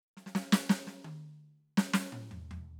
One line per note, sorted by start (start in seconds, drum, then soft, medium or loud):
0.17 snare soft
0.26 snare soft
0.35 snare medium
0.52 snare loud
0.70 snare loud
0.87 snare soft
1.05 high tom medium
1.77 snare loud
1.94 snare loud
2.12 mid tom medium
2.31 floor tom medium
2.51 floor tom medium